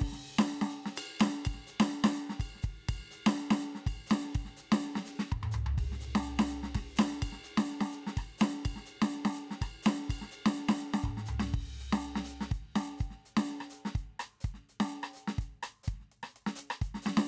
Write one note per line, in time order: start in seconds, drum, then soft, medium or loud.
0.01 kick medium
0.01 crash loud
0.08 kick soft
0.08 snare soft
0.19 hi-hat pedal soft
0.26 ride soft
0.39 snare loud
0.45 hi-hat pedal medium
0.61 snare medium
0.70 hi-hat pedal medium
0.70 ride soft
0.86 snare medium
0.96 hi-hat pedal medium
0.96 ride bell loud
1.20 snare loud
1.20 ride loud
1.26 snare medium
1.45 kick soft
1.45 ride bell loud
1.54 snare soft
1.67 hi-hat pedal medium
1.67 ride soft
1.80 snare loud
1.89 hi-hat pedal soft
1.94 ride soft
2.04 snare loud
2.15 hi-hat pedal medium
2.15 ride soft
2.29 snare medium
2.40 kick soft
2.40 ride bell loud
2.55 snare soft
2.62 kick soft
2.62 hi-hat pedal medium
2.62 ride medium
2.89 kick soft
2.89 ride bell loud
2.95 kick soft
2.97 kick soft
2.97 snare soft
3.11 hi-hat pedal medium
3.15 ride soft
3.26 snare loud
3.40 ride soft
3.50 snare loud
3.60 hi-hat pedal medium
3.60 ride soft
3.75 snare soft
3.86 kick soft
3.86 ride bell loud
3.92 kick soft
3.95 kick soft
4.06 hi-hat pedal medium
4.06 ride loud
4.11 snare loud
4.19 snare soft
4.35 kick soft
4.35 ride bell medium
4.41 kick soft
4.45 snare soft
4.57 hi-hat pedal medium
4.57 ride soft
4.72 snare loud
4.85 ride medium
4.95 snare medium
5.05 hi-hat pedal medium
5.05 ride medium
5.19 snare medium
5.27 hi-hat pedal soft
5.32 kick soft
5.32 mid tom medium
5.37 kick soft
5.43 mid tom loud
5.51 floor tom loud
5.51 hi-hat pedal medium
5.66 floor tom loud
5.78 kick soft
5.78 ride loud
5.83 kick soft
5.86 kick soft
5.92 snare soft
6.00 hi-hat pedal medium
6.05 ride medium
6.15 snare loud
6.29 ride soft
6.39 snare loud
6.49 hi-hat pedal medium
6.49 ride medium
6.63 snare medium
6.75 kick soft
6.75 snare medium
6.75 ride loud
6.96 snare loud
6.96 hi-hat pedal medium
6.96 ride medium
7.22 kick soft
7.22 ride bell loud
7.32 snare soft
7.43 hi-hat pedal medium
7.43 ride medium
7.57 snare loud
7.71 ride bell medium
7.81 snare medium
7.91 hi-hat pedal medium
7.91 ride medium
8.07 snare medium
8.17 kick soft
8.17 cross-stick medium
8.17 ride bell medium
8.38 snare loud
8.38 hi-hat pedal medium
8.38 ride medium
8.65 kick soft
8.65 ride bell loud
8.73 kick soft
8.73 snare soft
8.86 hi-hat pedal medium
8.91 ride soft
9.02 snare loud
9.15 ride soft
9.25 snare loud
9.35 hi-hat pedal medium
9.35 ride medium
9.51 snare medium
9.61 kick soft
9.61 cross-stick medium
9.61 ride bell loud
9.83 snare loud
9.83 hi-hat pedal medium
9.83 ride medium
9.92 cross-stick soft
10.09 kick soft
10.09 ride bell loud
10.21 snare soft
10.31 hi-hat pedal medium
10.31 ride soft
10.46 snare loud
10.59 ride medium
10.69 snare loud
10.79 hi-hat pedal medium
10.79 ride medium
10.94 snare loud
11.04 kick soft
11.04 mid tom medium
11.17 snare soft
11.26 floor tom medium
11.26 hi-hat pedal medium
11.39 snare medium
11.53 kick soft
11.53 crash medium
11.60 kick soft
11.64 kick soft
11.80 closed hi-hat medium
11.93 snare loud
12.04 closed hi-hat soft
12.16 snare medium
12.24 closed hi-hat soft
12.24 hi-hat pedal medium
12.41 snare medium
12.51 closed hi-hat medium
12.51 kick soft
12.76 closed hi-hat medium
12.76 snare loud
12.98 closed hi-hat medium
12.98 kick soft
12.98 hi-hat pedal soft
13.10 snare soft
13.17 snare soft
13.25 closed hi-hat soft
13.37 snare loud
13.50 closed hi-hat soft
13.60 cross-stick medium
13.70 closed hi-hat soft
13.70 hi-hat pedal medium
13.85 snare medium
13.95 closed hi-hat medium
13.95 kick soft
14.19 closed hi-hat medium
14.19 cross-stick medium
14.40 kick soft
14.40 hi-hat pedal soft
14.45 closed hi-hat soft
14.54 snare soft
14.69 closed hi-hat soft
14.80 snare loud
14.93 closed hi-hat soft
15.03 cross-stick medium
15.13 closed hi-hat soft
15.13 hi-hat pedal soft
15.28 snare medium
15.38 closed hi-hat medium
15.38 kick soft
15.63 closed hi-hat medium
15.63 cross-stick medium
15.83 hi-hat pedal medium
15.87 closed hi-hat medium
15.87 kick soft
15.93 snare soft
16.00 snare soft
16.12 closed hi-hat soft
16.23 cross-stick medium
16.28 hi-hat pedal soft
16.36 closed hi-hat soft
16.46 snare medium
16.55 closed hi-hat soft
16.55 hi-hat pedal medium
16.70 cross-stick medium
16.81 closed hi-hat medium
16.81 kick soft
16.94 snare medium
17.02 snare medium
17.02 hi-hat pedal medium
17.17 snare loud